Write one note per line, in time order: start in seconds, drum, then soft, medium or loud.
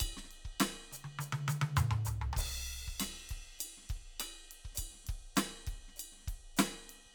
0.01 kick medium
0.01 ride bell loud
0.08 kick soft
0.14 kick soft
0.14 snare soft
0.25 snare soft
0.32 ride soft
0.46 kick soft
0.61 snare loud
0.61 hi-hat pedal medium
0.61 ride bell loud
0.93 hi-hat pedal medium
0.93 high tom soft
1.05 high tom medium
1.20 hi-hat pedal medium
1.20 high tom medium
1.33 high tom loud
1.49 hi-hat pedal medium
1.49 high tom loud
1.62 high tom loud
1.77 hi-hat pedal medium
1.77 mid tom loud
1.92 mid tom medium
2.06 floor tom medium
2.06 hi-hat pedal medium
2.22 floor tom medium
2.34 kick medium
2.34 floor tom medium
2.38 hi-hat pedal loud
2.38 crash loud
2.52 kick soft
2.88 kick soft
3.00 snare medium
3.00 hi-hat pedal medium
3.00 ride bell loud
3.30 kick soft
3.30 ride medium
3.37 kick soft
3.60 hi-hat pedal soft
3.60 ride bell loud
3.78 snare soft
3.81 snare soft
3.84 snare soft
3.89 kick soft
3.89 snare soft
3.89 ride soft
3.97 kick soft
4.21 cross-stick medium
4.21 hi-hat pedal medium
4.21 ride bell loud
4.52 ride medium
4.66 kick soft
4.73 snare soft
4.73 hi-hat pedal medium
4.78 kick soft
4.78 ride bell loud
4.92 snare soft
4.95 snare soft
5.05 snare soft
5.05 ride medium
5.09 kick soft
5.37 snare loud
5.37 hi-hat pedal medium
5.37 ride bell loud
5.67 kick soft
5.67 ride soft
5.73 kick soft
5.89 snare soft
5.97 hi-hat pedal soft
5.97 ride bell medium
6.12 snare soft
6.17 snare soft
6.20 snare soft
6.22 snare soft
6.28 kick soft
6.28 ride medium
6.35 kick soft
6.57 snare loud
6.57 hi-hat pedal medium
6.57 ride bell loud
6.72 snare soft
6.90 ride medium
7.06 kick soft